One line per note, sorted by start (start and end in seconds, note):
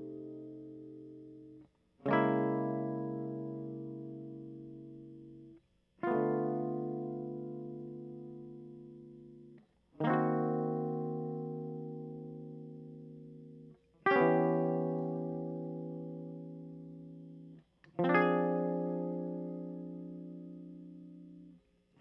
2.07 5.57 C#3
2.07 5.62 G#3
2.11 5.56 A#3
2.11 5.60 E4
6.04 9.61 F4
6.08 9.65 A3
6.08 9.62 B3
6.16 9.65 D3
10.02 13.76 D#3
10.02 13.79 A#3
10.08 13.73 C4
10.08 13.79 F#4
14.07 17.62 G4
14.12 17.61 C#4
14.16 17.64 B3
14.22 17.64 E3
18.00 21.61 F3
18.05 21.61 C4
18.10 21.55 D4
18.15 20.61 G#4